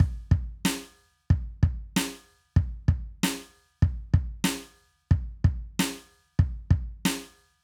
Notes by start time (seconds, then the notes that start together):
0.01 kick
0.32 kick
0.66 snare
1.31 kick
1.64 kick
1.97 snare
2.57 kick
2.89 kick
3.24 snare
3.83 kick
4.15 kick
4.45 snare
5.12 kick
5.45 kick
5.80 snare
6.40 kick
6.72 kick
7.06 snare